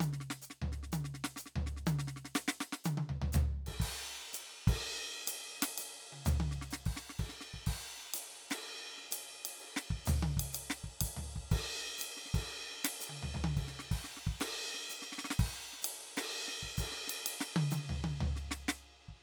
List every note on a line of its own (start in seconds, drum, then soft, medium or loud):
0.01 hi-hat pedal medium
0.01 high tom loud
0.13 snare soft
0.21 snare soft
0.31 snare medium
0.42 hi-hat pedal medium
0.51 snare soft
0.62 floor tom medium
0.73 snare soft
0.83 snare soft
0.93 hi-hat pedal medium
0.93 high tom medium
1.05 snare soft
1.15 snare soft
1.25 snare medium
1.37 snare medium
1.37 hi-hat pedal medium
1.46 snare soft
1.56 floor tom medium
1.67 snare soft
1.77 snare soft
1.87 hi-hat pedal medium
1.87 high tom loud
1.99 snare medium
2.08 snare medium
2.17 snare soft
2.25 snare medium
2.35 snare loud
2.35 hi-hat pedal medium
2.48 snare loud
2.61 snare medium
2.73 snare medium
2.85 hi-hat pedal medium
2.85 high tom loud
2.98 high tom medium
3.10 floor tom medium
3.22 floor tom medium
3.33 floor tom loud
3.33 hi-hat pedal loud
3.67 kick soft
3.67 ride medium
3.81 kick medium
3.81 crash medium
4.34 hi-hat pedal loud
4.34 ride medium
4.68 kick medium
4.68 ride loud
5.13 snare soft
5.28 hi-hat pedal loud
5.28 ride loud
5.63 snare loud
5.63 ride loud
5.78 hi-hat pedal medium
5.78 ride loud
6.13 high tom soft
6.26 floor tom loud
6.26 hi-hat pedal loud
6.41 high tom medium
6.52 snare soft
6.62 snare soft
6.71 snare medium
6.71 hi-hat pedal medium
6.86 kick medium
6.86 crash medium
6.97 snare medium
7.10 snare soft
7.19 kick medium
7.19 ride medium
7.30 snare soft
7.41 snare soft
7.54 kick soft
7.67 kick medium
7.67 crash medium
7.98 snare soft
8.14 hi-hat pedal loud
8.14 ride loud
8.51 snare medium
8.51 ride loud
8.66 ride soft
8.98 snare soft
9.02 snare soft
9.04 snare soft
9.12 hi-hat pedal loud
9.12 ride loud
9.46 ride loud
9.53 hi-hat pedal soft
9.60 ride medium
9.77 snare medium
9.91 kick medium
10.06 floor tom loud
10.06 hi-hat pedal loud
10.23 high tom medium
10.38 kick medium
10.38 ride loud
10.54 hi-hat pedal medium
10.54 ride loud
10.71 snare medium
10.85 kick soft
11.01 kick medium
11.01 hi-hat pedal medium
11.01 ride loud
11.17 floor tom medium
11.37 kick soft
11.52 kick medium
11.52 ride loud
11.99 hi-hat pedal loud
11.99 ride medium
12.17 snare soft
12.26 snare soft
12.35 kick medium
12.35 ride loud
12.51 ride soft
12.85 snare medium
12.85 ride loud
13.00 hi-hat pedal loud
13.00 ride medium
13.10 high tom soft
13.23 floor tom medium
13.35 floor tom medium
13.45 high tom medium
13.57 kick medium
13.57 ride medium
13.68 snare soft
13.80 snare soft
13.92 kick medium
13.92 crash medium
14.05 snare soft
14.17 snare soft
14.27 kick medium
14.41 snare loud
14.41 ride loud
14.75 snare soft
14.80 snare soft
14.90 hi-hat pedal medium
15.03 snare soft
15.13 snare soft
15.19 snare medium
15.25 snare medium
15.31 snare medium
15.40 kick medium
15.40 crash medium
15.74 snare soft
15.82 hi-hat pedal medium
15.82 ride loud
16.18 snare medium
16.18 ride loud
16.32 ride medium
16.48 snare soft
16.63 kick soft
16.78 kick medium
16.78 hi-hat pedal medium
16.78 ride loud
16.92 snare soft
17.08 snare soft
17.08 ride loud
17.27 ride loud
17.41 snare loud
17.57 high tom loud
17.71 hi-hat pedal medium
17.71 high tom medium
17.90 floor tom medium
18.05 high tom medium
18.21 floor tom loud
18.37 snare soft
18.52 snare medium
18.69 snare loud
19.09 kick soft